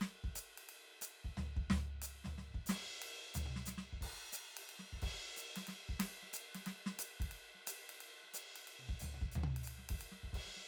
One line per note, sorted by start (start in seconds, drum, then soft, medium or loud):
0.01 snare medium
0.01 ride medium
0.24 kick soft
0.35 hi-hat pedal loud
0.35 ride medium
0.58 ride medium
0.69 ride medium
1.01 hi-hat pedal loud
1.01 ride medium
1.24 kick soft
1.37 snare soft
1.37 floor tom medium
1.56 kick soft
1.70 snare medium
1.70 floor tom medium
2.02 hi-hat pedal medium
2.02 ride medium
2.24 snare soft
2.24 floor tom medium
2.38 snare soft
2.38 floor tom soft
2.54 kick soft
2.66 snare medium
2.66 hi-hat pedal medium
2.70 ride medium
3.02 ride medium
3.34 floor tom medium
3.34 hi-hat pedal medium
3.46 high tom medium
3.56 snare soft
3.66 snare soft
3.66 hi-hat pedal medium
3.78 snare soft
3.92 kick soft
4.01 kick soft
4.01 crash medium
4.32 hi-hat pedal loud
4.32 ride medium
4.57 ride loud
4.69 ride medium
4.79 snare soft
4.92 kick soft
5.02 kick soft
5.02 ride medium
5.36 hi-hat pedal medium
5.36 ride medium
5.56 snare soft
5.56 ride medium
5.67 snare soft
5.67 ride medium
5.89 kick soft
5.99 snare medium
5.99 ride loud
6.22 snare soft
6.33 hi-hat pedal loud
6.33 ride medium
6.55 snare soft
6.55 ride medium
6.66 snare medium
6.66 ride medium
6.86 snare medium
6.99 hi-hat pedal loud
6.99 ride loud
7.20 kick soft
7.20 ride medium
7.31 ride medium
7.55 snare soft
7.67 hi-hat pedal loud
7.67 ride loud
7.89 ride medium
8.00 ride medium
8.23 snare soft
8.34 hi-hat pedal loud
8.34 ride medium
8.56 ride medium
8.67 ride medium
8.79 high tom soft
8.89 kick soft
8.99 floor tom medium
8.99 hi-hat pedal medium
9.14 high tom soft
9.21 kick soft
9.31 floor tom medium
9.31 hi-hat pedal soft
9.43 high tom medium
9.56 ride medium
9.63 hi-hat pedal medium
9.67 ride medium
9.78 snare soft
9.89 kick soft
9.89 ride medium
9.98 hi-hat pedal soft
9.98 ride medium
10.12 snare soft
10.23 kick soft
10.33 kick soft
10.33 ride medium
10.47 snare soft
10.56 snare soft